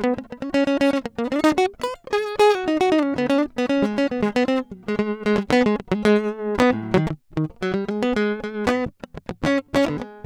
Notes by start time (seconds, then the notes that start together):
0.05 B3
0.34 B3
0.44 C#4
0.56 C#4
0.70 C#4
0.83 C#4
0.99 B3
1.59 F#4
1.83 B4
2.15 G#4
2.41 G#4
2.52 F#4
2.70 D#4
2.94 D#4
3.05 C#4
3.18 D3 B3
3.32 D4
3.60 B3
3.72 C#4
3.84 G#3
4.00 C#4
4.14 B3
4.25 G#3
4.38 B3
4.50 C4
4.90 G#3
5.01 G#3
5.28 G#3
5.55 B3
5.68 G#3
5.93 G#3
6.07 G#3
6.60 B3
6.75 A2
6.98 D#3
7.09 D#3
7.39 D#3
7.64 F#3
7.76 G3
7.90 G#3
8.04 B3
8.18 G#3
8.46 A3
8.69 B3
9.48 C#4
9.78 C#4
9.87 B3
9.92 D3
10.00 G#3 B3